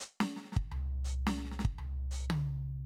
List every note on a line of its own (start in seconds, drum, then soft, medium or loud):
0.00 hi-hat pedal medium
0.20 snare medium
0.36 snare soft
0.41 snare soft
0.44 snare soft
0.52 snare soft
0.56 kick medium
0.71 floor tom loud
1.04 hi-hat pedal medium
1.27 snare loud
1.37 snare soft
1.44 snare soft
1.51 snare soft
1.59 snare soft
1.65 kick soft
1.78 floor tom medium
2.11 hi-hat pedal medium
2.30 high tom loud